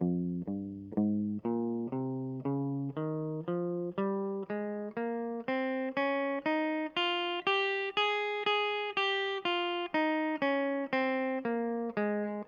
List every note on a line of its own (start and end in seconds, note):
0.04 0.48 F2
0.50 0.97 G2
0.99 1.42 G#2
1.47 1.92 A#2
1.94 2.45 C3
2.47 2.95 C#3
2.98 3.45 D#3
3.49 3.93 F3
3.99 4.47 G3
4.51 4.93 G#3
4.98 5.44 A#3
5.49 5.94 C4
5.98 6.43 C#4
6.47 6.91 D#4
6.97 7.43 F4
7.48 7.94 G4
7.98 8.47 G#4
8.47 8.96 G#4
8.98 9.42 G4
9.46 9.90 F4
9.95 10.39 D#4
10.43 10.90 C#4
10.94 11.45 C4
11.46 11.94 A#3
11.98 12.45 G#3